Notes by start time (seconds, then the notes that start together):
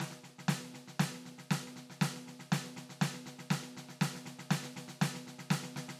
0.00 snare
0.10 snare
0.23 snare
0.38 snare
0.48 snare
0.64 snare
0.88 snare
0.99 snare
1.14 snare
1.25 snare
1.38 snare
1.51 snare
1.66 snare
1.76 snare
1.90 snare
2.01 snare
2.15 snare
2.27 snare
2.39 snare
2.52 snare
2.65 snare
2.76 snare
2.89 snare
3.01 snare
3.14 snare
3.26 snare
3.39 snare
3.50 snare
3.63 snare
3.77 snare
3.89 snare
4.01 snare
4.15 snare
4.26 snare
4.39 snare
4.51 snare
4.63 snare
4.76 snare
4.88 snare
5.01 snare
5.15 snare
5.27 snare
5.39 snare
5.50 snare
5.63 snare
5.76 snare
5.88 snare